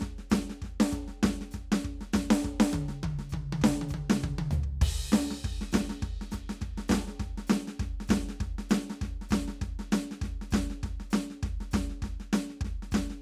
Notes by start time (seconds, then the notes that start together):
0.01 kick, snare
0.18 snare
0.30 kick, snare, hi-hat pedal
0.50 snare
0.62 kick, snare
0.80 snare
0.91 kick, snare, hi-hat pedal
1.08 snare
1.23 kick, snare
1.41 snare
1.51 kick, snare, hi-hat pedal
1.72 snare
1.84 kick, snare
2.01 snare
2.13 kick, snare, hi-hat pedal
2.31 snare
2.44 kick, snare
2.60 snare
2.71 kick, hi-hat pedal, high tom
2.89 snare
3.03 kick, high tom
3.19 snare
3.30 kick, hi-hat pedal
3.34 high tom
3.53 high tom
3.62 kick, snare
3.82 high tom
3.89 kick, hi-hat pedal
3.94 high tom
4.10 snare
4.24 kick, high tom
4.39 high tom
4.51 floor tom, hi-hat pedal
4.64 kick
4.82 kick, crash
5.12 snare, hi-hat pedal
5.31 snare
5.44 kick, snare
5.61 snare
5.72 kick, snare, hi-hat pedal
5.90 snare
6.02 kick, snare
6.21 snare
6.31 kick, snare, hi-hat pedal
6.49 snare
6.61 kick, snare
6.78 snare
6.88 kick, snare, hi-hat pedal
6.92 snare
7.08 snare
7.20 kick, snare
7.38 snare
7.47 snare, hi-hat pedal
7.68 snare
7.80 kick, snare
8.00 snare
8.08 kick, hi-hat pedal
8.29 snare
8.40 kick, snare
8.59 snare
8.70 snare, hi-hat pedal
8.90 snare
9.01 kick, snare
9.21 snare
9.29 kick, snare, hi-hat pedal
9.48 snare
9.62 kick, snare
9.79 snare
9.85 kick
9.92 snare, hi-hat pedal
10.11 snare
10.22 kick, snare
10.42 snare
10.51 kick, snare, hi-hat pedal
10.70 snare
10.83 kick, snare
11.00 snare
11.11 snare, hi-hat pedal
11.30 snare
11.43 kick, snare
11.61 snare
11.71 kick, snare, hi-hat pedal
11.90 snare
12.02 kick, snare
12.20 snare
12.33 snare, hi-hat pedal
12.50 snare
12.61 kick, snare
12.83 snare
12.92 kick, snare, hi-hat pedal
13.10 snare